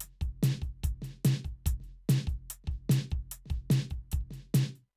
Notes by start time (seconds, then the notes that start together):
0.01 closed hi-hat, snare
0.22 kick, closed hi-hat
0.43 closed hi-hat, snare
0.62 kick, closed hi-hat
0.84 closed hi-hat, kick
1.02 snare, closed hi-hat
1.25 closed hi-hat, snare
1.45 kick, closed hi-hat
1.66 closed hi-hat, kick
1.81 snare, closed hi-hat
2.10 closed hi-hat, snare
2.28 kick, closed hi-hat
2.51 closed hi-hat
2.65 kick, snare
2.72 closed hi-hat
2.90 closed hi-hat, snare
3.11 kick, closed hi-hat
3.32 closed hi-hat
3.46 snare
3.50 kick, closed hi-hat
3.71 closed hi-hat, snare
3.91 kick, closed hi-hat
4.12 closed hi-hat, kick
4.21 kick
4.31 snare, closed hi-hat
4.55 closed hi-hat, snare
4.76 closed hi-hat